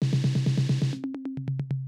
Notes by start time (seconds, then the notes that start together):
0.02 snare
0.13 snare
0.24 snare
0.35 snare
0.46 snare
0.58 snare
0.69 snare
0.82 snare
0.93 high tom
1.04 high tom
1.15 high tom
1.25 high tom
1.37 floor tom
1.48 floor tom
1.60 floor tom
1.71 floor tom